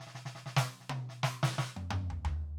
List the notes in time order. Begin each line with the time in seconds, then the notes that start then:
0.00 snare
0.07 snare
0.15 snare
0.25 snare
0.35 snare
0.46 snare
0.56 snare
0.80 snare
0.90 high tom
1.09 snare
1.23 snare
1.43 snare
1.58 snare
1.76 mid tom
1.91 mid tom
2.10 floor tom
2.25 floor tom